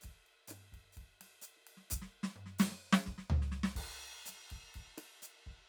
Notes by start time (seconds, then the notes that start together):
0.01 kick, snare, hi-hat pedal, ride
0.09 kick
0.26 ride
0.47 cross-stick, snare, hi-hat pedal, mid tom, ride
0.72 kick, ride
0.92 hi-hat pedal
0.97 kick, ride
1.01 kick
1.21 snare, ride
1.42 hi-hat pedal, ride
1.57 cross-stick
1.67 ride
1.77 snare
1.90 kick, hi-hat pedal, ride
1.98 kick, snare
2.23 snare
2.36 mid tom
2.46 snare
2.59 snare, hi-hat pedal
2.71 snare
2.93 snare
3.06 kick, snare
3.13 kick
3.18 snare
3.30 floor tom
3.42 snare
3.52 snare
3.63 snare
3.75 kick, crash
4.26 snare, hi-hat pedal, ride
4.50 kick, ride
4.57 kick
4.73 kick, hi-hat pedal, ride
4.81 kick
4.97 cross-stick, snare, ride
5.22 hi-hat pedal
5.46 kick
5.51 kick